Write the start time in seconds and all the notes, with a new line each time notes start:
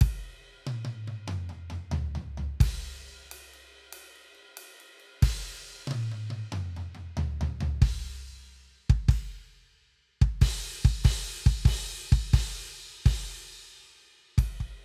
0.01 kick, ride
0.67 high tom
0.85 high tom
1.08 high tom
1.28 mid tom
1.49 mid tom
1.70 mid tom
1.91 floor tom
2.15 floor tom
2.38 floor tom
2.60 kick, ride, crash
3.32 ride
3.54 ride
3.71 ride
3.93 ride
4.16 ride
4.35 ride
4.57 ride
4.80 ride
5.00 ride
5.22 kick, ride, crash
5.87 high tom
5.91 high tom
6.12 high tom
6.30 high tom
6.52 mid tom
6.76 mid tom
6.95 mid tom
7.17 floor tom
7.41 floor tom
7.61 floor tom
7.82 kick, crash
8.90 kick
9.08 kick, crash
10.21 kick
10.41 kick, crash
10.85 kick
11.04 kick, crash
11.46 kick
11.65 kick, crash
12.12 kick
12.33 kick, crash
13.06 kick, crash
14.38 kick, ride
14.60 kick